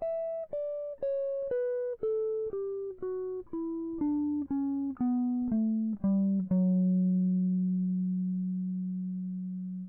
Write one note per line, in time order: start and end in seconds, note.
0.02 0.46 E5
0.53 0.97 D5
1.03 1.53 C#5
1.51 1.97 B4
2.03 2.52 A4
2.53 2.96 G4
3.03 3.44 F#4
3.54 4.04 E4
4.02 4.46 D4
4.51 4.94 C#4
5.01 5.54 B3
5.52 5.97 A3
6.05 6.50 G3
6.52 9.89 F#3